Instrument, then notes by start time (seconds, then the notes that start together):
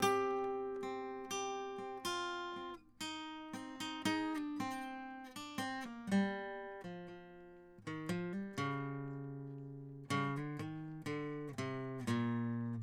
acoustic guitar
0.01 C4 G4
0.83 C4
1.31 G4
1.79 C4
2.05 F4
2.57 C4
2.75 D#4
3.01 D#4
3.54 C4
3.81 D#4
4.06 D#4 G#4
4.36 D4
4.61 C4
4.73 D3
5.36 D4
5.58 C4
5.82 A#3
6.13 G3
6.82 F3
7.09 F3
7.87 D#3
8.10 F3
8.34 G3
8.58 C#3 G3
10.11 C#3 G3
10.38 D3
10.60 D#3
11.06 D3
11.59 C3
12.08 A#2